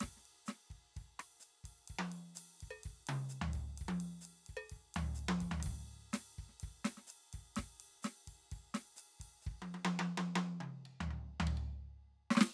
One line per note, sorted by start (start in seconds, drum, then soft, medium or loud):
0.01 kick soft
0.01 snare medium
0.01 ride medium
0.09 kick soft
0.17 snare soft
0.26 ride soft
0.46 snare soft
0.46 hi-hat pedal medium
0.46 ride medium
0.71 kick soft
0.71 ride soft
0.94 kick soft
0.94 hi-hat pedal soft
0.94 ride soft
1.02 kick soft
1.20 cross-stick medium
1.20 ride medium
1.40 hi-hat pedal medium
1.40 ride soft
1.64 kick soft
1.64 ride medium
1.84 hi-hat pedal soft
1.84 ride medium
1.90 kick soft
1.95 kick soft
1.99 high tom medium
2.12 ride soft
2.35 hi-hat pedal medium
2.35 ride medium
2.61 kick soft
2.61 ride soft
2.68 kick soft
2.68 percussion medium
2.81 hi-hat pedal soft
2.81 ride medium
2.86 kick soft
3.07 mid tom loud
3.07 ride medium
3.29 hi-hat pedal medium
3.29 ride soft
3.42 floor tom medium
3.54 kick soft
3.54 ride soft
3.61 kick soft
3.78 kick soft
3.78 ride medium
3.87 kick soft
3.87 high tom loud
4.01 ride medium
4.21 hi-hat pedal medium
4.26 ride medium
4.47 kick soft
4.47 ride soft
4.57 percussion loud
4.65 hi-hat pedal soft
4.70 kick soft
4.70 ride soft
4.77 kick soft
4.95 floor tom medium
4.95 ride medium
5.15 hi-hat pedal medium
5.20 ride soft
5.29 high tom loud
5.41 kick soft
5.41 ride medium
5.47 kick soft
5.52 floor tom medium
5.59 floor tom soft
5.59 hi-hat pedal soft
5.63 kick soft
5.63 ride medium
5.72 kick soft
5.90 ride soft
6.13 snare medium
6.13 hi-hat pedal medium
6.13 ride medium
6.39 kick soft
6.44 kick soft
6.49 snare soft
6.60 kick soft
6.60 hi-hat pedal soft
6.60 ride medium
6.85 snare medium
6.85 ride medium
6.97 snare soft
7.07 hi-hat pedal medium
7.07 ride medium
7.33 kick soft
7.33 ride medium
7.39 kick soft
7.56 kick soft
7.56 snare medium
7.56 ride medium
7.64 kick soft
7.80 ride medium
8.03 snare medium
8.03 hi-hat pedal medium
8.03 ride medium
8.28 kick soft
8.28 ride soft
8.52 kick soft
8.52 ride soft
8.75 snare medium
8.75 ride medium
8.97 hi-hat pedal medium
8.97 ride medium
9.20 kick soft
9.20 ride medium
9.42 hi-hat pedal soft
9.47 kick soft
9.52 kick soft
9.62 high tom medium
9.75 high tom medium
9.85 high tom loud
10.00 high tom medium
10.18 high tom medium
10.36 high tom loud
10.61 mid tom medium
10.86 floor tom medium
11.01 floor tom medium
11.11 floor tom soft
11.40 floor tom loud
11.47 floor tom medium
11.57 floor tom medium
12.31 snare medium
12.36 cross-stick medium
12.36 snare medium
12.41 snare loud